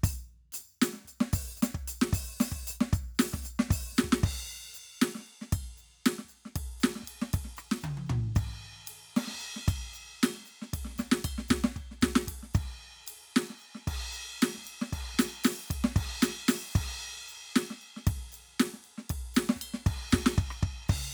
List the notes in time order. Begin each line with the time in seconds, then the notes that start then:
0.01 kick
0.04 kick, percussion
0.53 percussion
0.55 percussion
0.83 snare, percussion
0.94 snare
0.97 snare
1.00 snare
1.03 kick, snare
1.08 percussion
1.21 snare
1.34 kick, percussion
1.58 percussion
1.63 snare, percussion
1.75 kick
1.88 percussion
2.02 snare
2.14 kick, percussion
2.41 snare, percussion
2.53 kick
2.68 kick, percussion
2.71 percussion
2.82 snare
2.94 kick, percussion
3.16 percussion
3.20 snare, percussion
3.34 kick, snare
3.38 snare
3.43 snare, percussion
3.46 percussion
3.60 snare
3.69 kick, snare, percussion
3.93 snare
3.98 snare, percussion
4.05 kick
4.13 snare
4.24 kick, crash
4.75 percussion
5.02 snare, ride
5.16 snare
5.19 snare
5.27 ride
5.42 snare
5.53 kick, ride bell
5.78 ride bell, percussion
6.07 snare, ride bell
6.19 snare
6.25 kick
6.30 ride, percussion
6.46 snare
6.57 kick, ride
6.81 snare, percussion, ride
6.96 snare
7.01 kick, snare
7.06 ride, percussion
7.23 snare
7.34 kick, ride
7.45 snare
7.58 cross-stick, percussion
7.72 snare
7.82 kick, mid tom, percussion
7.98 high tom
8.07 kick, floor tom, percussion
8.36 kick, percussion, ride
8.87 ride, percussion
9.17 snare, ride
9.28 snare
9.31 snare
9.34 kick, snare
9.40 ride, percussion
9.57 snare
9.69 kick, ride bell
9.95 ride, percussion
10.24 snare, ride bell
10.35 snare
10.38 snare
10.41 snare
10.45 snare, ride, percussion
10.63 snare
10.74 kick, ride
10.86 snare
10.90 snare
10.96 kick, snare, percussion
11.00 snare
11.12 snare
11.25 kick, ride bell
11.39 snare
11.49 kick, snare, percussion
11.65 snare
11.77 kick, snare, ride
11.92 snare
12.02 kick, snare, percussion
12.16 snare
12.26 kick, ride, percussion
12.44 snare
12.55 kick, percussion, ride
13.08 ride, percussion
13.37 snare, ride
13.51 snare
13.59 ride, percussion
13.76 snare
13.88 kick, ride
14.13 ride, percussion
14.43 snare, ride
14.55 kick, snare
14.59 snare
14.63 snare, percussion
14.66 snare, ride
14.82 snare
14.93 kick, ride
15.15 kick, percussion
15.20 snare, percussion
15.45 snare, percussion
15.69 kick, ride, percussion
15.85 snare
15.97 kick, ride
16.23 snare, percussion
16.49 snare, percussion
16.76 kick, ride
17.29 percussion
17.57 snare, ride bell
17.71 snare
17.82 ride
17.97 snare
18.08 kick, ride
18.33 ride, percussion
18.61 snare, ride
18.74 snare
18.85 ride
18.99 snare
19.11 kick, ride
19.35 snare, ride, percussion
19.50 snare
19.57 kick, percussion
19.62 ride bell
19.75 snare
19.87 kick, ride
20.11 kick, snare, percussion, ride
20.27 snare
20.39 kick, ride
20.51 cross-stick
20.64 kick
20.87 kick, crash
20.90 kick, mid tom